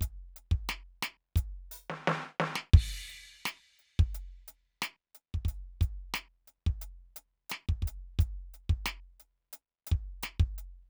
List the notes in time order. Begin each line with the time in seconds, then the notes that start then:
0.01 closed hi-hat, kick
0.36 closed hi-hat
0.51 kick
0.69 closed hi-hat, snare
1.03 closed hi-hat, snare
1.36 closed hi-hat, kick
1.71 open hi-hat
1.90 snare
2.08 snare
2.40 snare
2.56 snare
2.74 kick, crash
3.10 closed hi-hat
3.46 closed hi-hat, snare
3.79 closed hi-hat
3.99 kick, snare
4.15 closed hi-hat
4.48 closed hi-hat
4.82 closed hi-hat, snare
5.15 closed hi-hat
5.34 kick
5.45 open hi-hat, kick
5.81 kick, closed hi-hat
6.14 closed hi-hat, snare
6.48 closed hi-hat
6.67 kick
6.82 closed hi-hat
7.16 closed hi-hat
7.50 closed hi-hat, snare
7.69 kick
7.82 kick
7.87 closed hi-hat
8.19 kick, closed hi-hat
8.54 closed hi-hat
8.70 kick
8.86 snare, closed hi-hat
9.20 closed hi-hat
9.53 closed hi-hat
9.87 closed hi-hat
9.92 kick
10.23 snare, closed hi-hat
10.40 kick
10.58 closed hi-hat